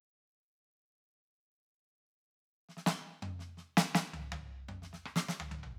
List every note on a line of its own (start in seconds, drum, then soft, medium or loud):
2.69 snare soft
2.77 snare soft
2.86 snare loud
3.22 high tom loud
3.39 snare soft
3.57 snare soft
3.77 snare loud
3.95 snare loud
4.13 mid tom medium
4.32 mid tom medium
4.69 high tom medium
4.82 snare soft
4.93 snare soft
5.06 cross-stick medium
5.16 snare loud
5.28 snare medium
5.40 mid tom medium
5.51 mid tom medium
5.63 floor tom medium